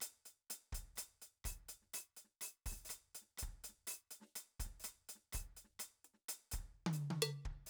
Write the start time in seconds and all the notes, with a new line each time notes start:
0.01 closed hi-hat, cross-stick
0.26 closed hi-hat
0.50 closed hi-hat, snare
0.73 closed hi-hat, kick
0.96 closed hi-hat, cross-stick, hi-hat pedal
1.22 closed hi-hat
1.45 open hi-hat, kick, cross-stick, hi-hat pedal
1.69 closed hi-hat
1.82 snare
1.94 open hi-hat, cross-stick
2.17 closed hi-hat
2.25 snare
2.42 open hi-hat, cross-stick
2.66 open hi-hat, kick
2.72 snare
2.85 hi-hat pedal
2.90 closed hi-hat, cross-stick
3.15 closed hi-hat
3.22 snare
3.38 closed hi-hat, cross-stick
3.43 kick
3.64 closed hi-hat
3.69 snare
3.88 open hi-hat, cross-stick
4.11 closed hi-hat
4.21 snare
4.36 closed hi-hat, cross-stick
4.60 closed hi-hat, kick
4.65 snare
4.80 hi-hat pedal
4.84 closed hi-hat, cross-stick
5.09 closed hi-hat
5.16 snare
5.33 open hi-hat, kick, cross-stick, hi-hat pedal
5.57 closed hi-hat
5.65 snare
5.80 closed hi-hat, cross-stick
6.05 closed hi-hat
6.14 snare
6.29 closed hi-hat, cross-stick
6.52 closed hi-hat, kick
6.87 high tom
6.93 hi-hat pedal
7.11 high tom
7.22 hi-hat pedal, percussion
7.46 kick
7.67 hi-hat pedal